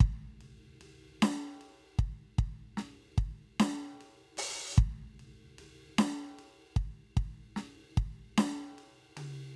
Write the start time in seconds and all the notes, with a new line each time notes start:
0.01 kick, ride
0.42 ride
0.82 ride
1.23 snare, ride
1.36 snare
1.62 ride
2.00 kick, ride
2.39 kick, ride
2.78 snare, ride
3.19 kick, ride
3.60 snare
3.73 snare
4.01 ride
4.38 open hi-hat, ride
4.79 kick, hi-hat pedal, ride
5.20 ride
5.59 ride
5.99 snare, ride
6.13 snare
6.15 snare
6.40 ride
6.77 kick, ride
7.17 kick, ride
7.57 snare, ride
7.98 kick, ride
8.38 snare, ride
8.79 ride
9.18 high tom, ride